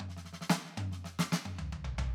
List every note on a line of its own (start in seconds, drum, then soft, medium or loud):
0.00 high tom medium
0.09 snare soft
0.17 snare soft
0.25 snare soft
0.33 snare soft
0.41 snare medium
0.50 snare loud
0.65 snare soft
0.77 high tom loud
0.92 snare soft
1.04 snare medium
1.19 snare loud
1.32 snare loud
1.45 high tom loud
1.58 mid tom loud
1.72 mid tom medium
1.84 floor tom loud
1.98 floor tom loud